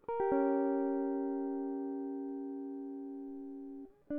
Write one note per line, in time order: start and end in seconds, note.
0.12 3.80 A#4
0.21 3.97 G4
0.33 3.96 C#4
4.11 4.19 D4